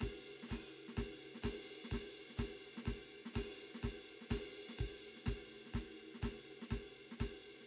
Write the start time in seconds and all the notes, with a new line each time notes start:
0.01 kick, snare, ride
0.43 snare
0.49 kick, snare, hi-hat pedal, ride
0.89 snare
0.97 kick, snare, ride
1.35 snare
1.43 kick, snare, hi-hat pedal, ride
1.85 snare
1.92 kick, snare, ride
2.30 snare
2.38 kick, snare, hi-hat pedal, ride
2.78 snare
2.84 snare, hi-hat pedal, ride
2.88 kick
3.26 snare
3.34 kick, snare, hi-hat pedal, ride
3.75 snare
3.83 kick, snare, ride
4.21 snare
4.30 kick, snare, hi-hat pedal, ride
4.36 snare
4.69 snare
4.77 hi-hat pedal, ride
4.81 kick
5.17 snare
5.26 kick, snare, hi-hat pedal, ride
5.66 snare
5.74 kick, snare, ride
6.15 snare
6.22 kick, snare, hi-hat pedal, ride
6.62 snare
6.69 kick, snare, hi-hat pedal, ride
7.12 snare
7.20 kick, snare, hi-hat pedal, ride
7.61 snare